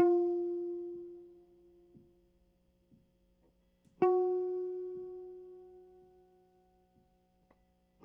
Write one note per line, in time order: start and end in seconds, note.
0.00 2.53 F4
4.03 7.26 F#4